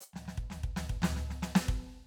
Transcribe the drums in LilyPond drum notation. \new DrumStaff \drummode { \time 4/4 \tempo 4 = 116 hhp16 <tomfh sn>16 <tomfh sn>16 bd16 <tomfh sn>16 bd16 <sn tomfh>16 bd16 <tomfh sn>16 sn16 sn16 sn16 sn16 bd8. | }